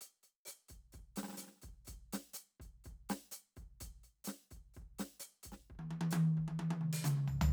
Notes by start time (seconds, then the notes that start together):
0.03 closed hi-hat
0.23 closed hi-hat
0.45 open hi-hat, hi-hat pedal
0.68 closed hi-hat, kick
0.92 kick, hi-hat pedal
0.99 kick
1.16 closed hi-hat, snare
1.23 snare
1.28 snare
1.33 snare
1.37 closed hi-hat, snare, hi-hat pedal
1.42 snare
1.47 snare
1.52 snare
1.56 snare
1.61 closed hi-hat, kick, snare
1.63 snare
1.67 kick, snare
1.73 snare
1.85 closed hi-hat, kick, hi-hat pedal
1.93 kick
2.12 closed hi-hat, snare
2.33 hi-hat pedal
2.38 closed hi-hat
2.60 closed hi-hat, kick
2.65 kick
2.84 closed hi-hat, kick
2.91 kick
3.09 closed hi-hat, snare
3.31 closed hi-hat, hi-hat pedal
3.56 closed hi-hat, kick
3.62 kick
3.80 closed hi-hat, kick
3.86 kick
4.03 closed hi-hat
4.24 snare, hi-hat pedal
4.28 closed hi-hat
4.50 closed hi-hat, kick
4.56 kick
4.74 open hi-hat, kick
4.81 kick
4.98 closed hi-hat, snare
5.19 hi-hat pedal
5.43 closed hi-hat, kick
5.52 snare
5.70 kick
5.75 kick
5.79 high tom
5.90 high tom
6.01 high tom
6.11 hi-hat pedal, high tom
6.25 high tom
6.37 kick, high tom
6.43 kick
6.48 high tom
6.59 high tom
6.70 high tom
6.81 mid tom
6.93 closed hi-hat
7.04 hi-hat pedal, mid tom
7.17 mid tom
7.27 kick, floor tom
7.41 floor tom